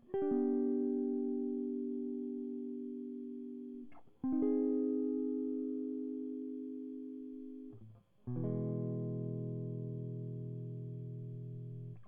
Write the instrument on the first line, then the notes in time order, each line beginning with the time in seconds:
electric guitar
0.14 G4
0.22 D4
0.31 B3
4.24 C4
4.32 D#4
4.42 G#4
8.28 B2
8.36 E3
8.44 G#3